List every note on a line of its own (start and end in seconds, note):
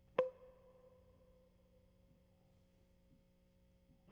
0.19 0.30 C5